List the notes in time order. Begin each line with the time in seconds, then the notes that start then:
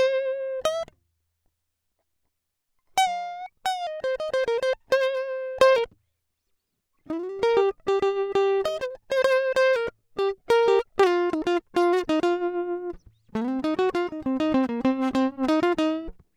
0.01 C5
0.66 D#5
2.98 F#5
3.66 F#5
4.05 C5
4.34 C5
4.49 A#4
4.63 C5
4.93 C#5
5.03 C5
5.16 C5
5.62 C5
7.11 F#4
7.58 G4
7.89 G4
8.04 G4
8.36 G4
8.66 D#5
8.82 C5
9.23 C5
9.33 C5
9.57 C5
9.77 A#4
10.20 G4
10.51 A#4
10.69 G4
11.00 F4
11.34 D#4
11.48 F4
11.77 F4
12.10 D#4
12.24 F4
13.36 A3
13.49 C4
13.65 D#4
13.80 F#4
13.96 F4
14.08 D#4
14.27 C4
14.41 D#4
14.55 C4
14.65 A#3
14.86 C4
15.16 C4
15.49 D#4
15.64 F4
15.79 D#4